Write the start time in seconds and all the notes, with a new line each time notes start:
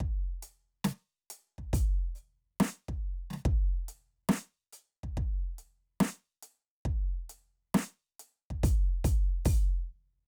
0.01 kick
0.43 closed hi-hat
0.85 snare
1.31 closed hi-hat
1.59 kick
1.74 closed hi-hat, kick
2.16 hi-hat pedal
2.61 snare
2.89 kick
3.31 snare
3.34 snare
3.43 kick
3.46 kick
3.89 closed hi-hat
4.30 snare
4.73 closed hi-hat
5.04 kick
5.18 kick, snare, crash, ride
5.59 closed hi-hat
6.01 snare
6.43 closed hi-hat
6.86 kick
7.30 closed hi-hat
7.75 snare
8.20 closed hi-hat
8.51 kick
8.64 closed hi-hat, kick
9.05 closed hi-hat, kick
9.46 open hi-hat, kick